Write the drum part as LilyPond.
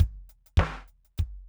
\new DrumStaff \drummode { \time 4/4 \tempo 4 = 100 <bd hh>8 hh16 hh16 <bd sn>8 hh16 hh16 <hh bd>4 r4 | }